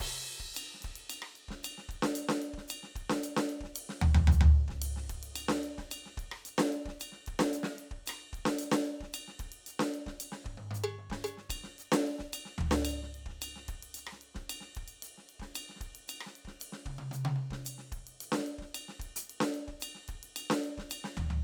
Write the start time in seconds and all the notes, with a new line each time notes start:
0.01 kick, hi-hat pedal, crash
0.40 kick
0.46 kick
0.55 hi-hat pedal, ride bell
0.75 snare
0.81 snare, ride
0.85 kick, snare
0.95 snare, ride
1.10 hi-hat pedal, ride bell
1.23 cross-stick
1.36 ride
1.49 kick, snare
1.64 hi-hat pedal, ride bell
1.78 snare
1.90 kick, ride
1.96 kick
2.03 snare
2.16 hi-hat pedal, ride bell
2.29 snare
2.43 ride
2.54 kick
2.58 snare
2.69 hi-hat pedal, ride bell
2.84 snare
2.96 kick, ride
3.03 kick
3.10 snare
3.16 snare
3.24 hi-hat pedal, ride bell
3.37 snare
3.50 ride
3.61 kick, snare
3.67 kick
3.76 hi-hat pedal, ride
3.90 snare
4.02 kick, floor tom
4.09 kick
4.16 floor tom
4.28 floor tom
4.32 hi-hat pedal
4.42 floor tom
4.53 floor tom
4.69 kick, snare
4.83 hi-hat pedal, ride
4.97 snare
5.05 cross-stick
5.10 kick, ride
5.17 kick
5.24 snare, ride
5.28 snare
5.36 hi-hat pedal, ride bell
5.49 snare
5.56 snare
5.64 ride
5.79 kick, snare
5.92 hi-hat pedal, ride bell
6.06 snare
6.18 kick, ride
6.25 kick
6.32 cross-stick
6.46 hi-hat pedal, ride bell
6.59 snare
6.73 ride
6.86 kick, snare
7.00 hi-hat pedal, ride bell
7.13 snare
7.27 kick, ride
7.35 kick
7.40 snare
7.54 hi-hat pedal, ride bell
7.64 snare
7.79 ride
7.92 kick
8.07 cross-stick, hi-hat pedal, ride bell
8.34 kick, ride
8.39 kick
8.46 snare
8.59 hi-hat pedal, ride bell
8.72 snare
8.85 ride
9.01 kick, snare
9.14 hi-hat pedal, ride bell
9.28 snare
9.39 kick, snare, ride
9.46 kick
9.53 ride
9.67 hi-hat pedal, ride bell
9.80 snare
9.95 ride
10.07 kick, snare
10.21 hi-hat pedal, ride bell
10.33 snare
10.45 kick, mid tom
10.53 kick
10.58 mid tom
10.72 hi-hat pedal, mid tom
10.85 percussion
10.99 mid tom
11.11 kick, snare
11.25 hi-hat pedal, percussion
11.38 snare
11.50 kick, ride bell
11.57 kick
11.64 snare
11.79 hi-hat pedal, ride
11.93 snare
12.07 ride
12.19 kick, snare
12.33 hi-hat pedal, ride bell
12.46 snare
12.59 kick, floor tom
12.67 kick
12.72 snare
12.81 snare
12.86 hi-hat pedal, ride bell
13.03 snare
13.15 ride
13.27 kick, snare
13.32 kick
13.42 hi-hat pedal, ride bell
13.57 snare
13.66 kick, cross-stick, ride
13.76 kick, snare
13.83 snare, ride
13.95 hi-hat pedal, ride bell
14.08 cross-stick
14.13 snare
14.22 ride
14.35 kick, snare
14.50 hi-hat pedal, ride bell
14.61 snare
14.76 kick, ride
14.83 kick
14.89 ride bell
15.03 hi-hat pedal, ride
15.18 snare
15.30 ride
15.40 kick, snare
15.55 hi-hat pedal, ride bell
15.70 snare
15.77 snare
15.81 kick, ride
15.94 snare, ride
16.08 hi-hat pedal, ride bell
16.21 cross-stick
16.27 snare
16.36 ride
16.46 kick, snare
16.61 hi-hat pedal, ride
16.73 snare
16.86 kick, high tom
16.99 open hi-hat, high tom
17.12 hi-hat pedal, high tom
17.26 high tom
17.37 high tom
17.51 kick, snare
17.56 kick
17.66 hi-hat pedal, ride bell
17.79 snare
17.88 cross-stick
17.93 kick, ride
17.99 kick
18.08 ride
18.21 hi-hat pedal, ride
18.33 snare
18.39 snare
18.47 ride
18.59 kick, snare
18.75 hi-hat pedal, ride bell
18.89 snare
19.00 kick, ride
19.06 kick
19.17 closed hi-hat
19.30 ride
19.41 snare
19.55 ride
19.68 kick, snare
19.81 hi-hat pedal, ride bell
19.95 snare
20.04 cross-stick
20.09 kick, ride
20.16 kick
20.23 snare, ride
20.27 snare
20.37 hi-hat pedal, ride bell
20.51 snare
20.65 ride
20.78 kick, snare
20.91 hi-hat pedal, ride bell
21.05 snare
21.18 kick, floor tom
21.25 kick
21.31 floor tom